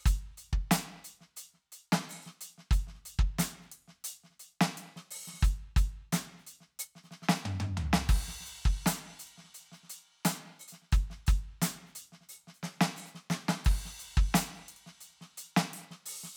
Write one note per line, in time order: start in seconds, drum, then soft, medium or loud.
0.01 hi-hat pedal soft
0.06 closed hi-hat medium
0.06 kick loud
0.37 closed hi-hat medium
0.53 kick loud
0.71 closed hi-hat loud
0.71 snare loud
1.04 closed hi-hat medium
1.21 snare soft
1.36 closed hi-hat medium
1.36 hi-hat pedal medium
1.54 snare soft
1.72 closed hi-hat medium
1.92 snare loud
2.09 open hi-hat medium
2.26 snare soft
2.41 closed hi-hat medium
2.58 snare soft
2.71 closed hi-hat medium
2.71 kick loud
2.87 snare soft
2.94 snare soft
3.05 closed hi-hat medium
3.19 kick loud
3.39 closed hi-hat loud
3.39 snare loud
3.62 hi-hat pedal soft
3.72 closed hi-hat medium
3.88 snare soft
4.04 closed hi-hat loud
4.24 snare soft
4.30 snare soft
4.40 closed hi-hat medium
4.61 snare loud
4.77 closed hi-hat medium
4.96 snare soft
5.11 open hi-hat loud
5.27 snare soft
5.34 snare soft
5.41 closed hi-hat medium
5.41 kick loud
5.41 snare soft
5.41 hi-hat pedal soft
5.50 snare soft
5.54 snare soft
5.58 snare soft
5.65 snare soft
5.76 closed hi-hat medium
5.76 kick loud
6.12 closed hi-hat loud
6.12 snare loud
6.39 hi-hat pedal soft
6.47 closed hi-hat medium
6.61 snare soft
6.79 open hi-hat loud
6.79 hi-hat pedal medium
6.95 snare soft
7.03 snare soft
7.03 hi-hat pedal soft
7.11 snare soft
7.22 snare soft
7.29 snare loud
7.36 hi-hat pedal soft
7.45 high tom loud
7.60 high tom loud
7.77 mid tom loud
7.93 snare loud
8.09 kick loud
8.09 crash medium
8.28 snare soft
8.40 snare soft
8.46 closed hi-hat medium
8.65 kick loud
8.86 open hi-hat loud
8.86 snare loud
9.19 closed hi-hat medium
9.27 closed hi-hat soft
9.38 snare soft
9.44 snare soft
9.54 closed hi-hat medium
9.72 snare soft
9.72 hi-hat pedal soft
9.83 snare soft
9.90 closed hi-hat medium
10.25 closed hi-hat loud
10.25 snare loud
10.60 open hi-hat medium
10.60 hi-hat pedal soft
10.68 closed hi-hat soft
10.72 snare soft
10.82 snare soft
10.92 closed hi-hat soft
10.92 kick loud
11.10 snare soft
11.27 closed hi-hat medium
11.27 kick loud
11.62 closed hi-hat loud
11.62 snare loud
11.87 snare soft
11.87 hi-hat pedal soft
11.95 closed hi-hat medium
12.12 snare soft
12.21 snare soft
12.29 open hi-hat medium
12.29 hi-hat pedal soft
12.47 snare soft
12.54 hi-hat pedal soft
12.63 snare medium
12.81 snare loud
12.96 open hi-hat medium
13.06 hi-hat pedal soft
13.15 snare soft
13.30 snare loud
13.30 hi-hat pedal soft
13.49 snare loud
13.65 kick loud
13.65 crash medium
13.76 hi-hat pedal soft
13.85 snare soft
14.00 closed hi-hat medium
14.17 kick loud
14.34 closed hi-hat loud
14.34 snare loud
14.54 hi-hat pedal soft
14.68 closed hi-hat medium
14.76 closed hi-hat soft
14.86 snare soft
15.01 closed hi-hat medium
15.21 snare soft
15.37 closed hi-hat medium
15.57 snare loud
15.74 open hi-hat medium
15.78 hi-hat pedal soft
15.91 snare soft
16.06 open hi-hat medium
16.23 snare soft